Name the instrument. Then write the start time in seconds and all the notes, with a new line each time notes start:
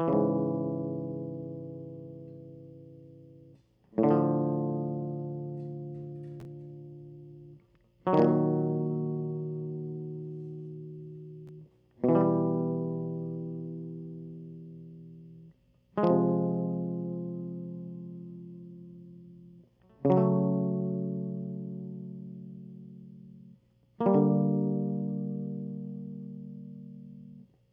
electric guitar
0.00 E3
0.09 C#3
0.14 G#2
3.99 A2
4.04 D3
4.11 F3
8.07 F#3
8.14 D#3
8.20 A#2
12.05 B2
12.09 E3
12.15 G3
12.22 C4
15.98 G#3
16.04 F3
16.11 C3
20.06 C#3
20.10 F#3
20.17 A3
24.01 A#3
24.06 G3
24.15 D3